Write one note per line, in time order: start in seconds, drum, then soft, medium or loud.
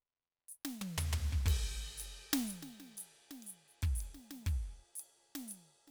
0.48 hi-hat pedal medium
0.65 snare medium
0.81 high tom medium
0.98 floor tom loud
0.98 hi-hat pedal medium
1.13 floor tom medium
1.32 kick soft
1.46 kick medium
1.46 ride medium
1.46 crash medium
1.97 hi-hat pedal medium
1.97 ride medium
2.33 snare medium
2.33 ride medium
2.47 hi-hat pedal medium
2.47 ride soft
2.62 snare soft
2.80 snare soft
2.97 hi-hat pedal medium
2.97 ride medium
3.31 snare soft
3.42 ride soft
3.46 hi-hat pedal medium
3.68 hi-hat pedal soft
3.82 kick medium
3.82 ride medium
3.95 hi-hat pedal medium
4.00 ride soft
4.14 snare soft
4.31 snare soft
4.46 kick soft
4.46 ride medium
4.95 hi-hat pedal medium
4.99 ride soft
5.35 snare soft
5.35 ride medium
5.48 hi-hat pedal medium
5.48 ride soft
5.87 snare soft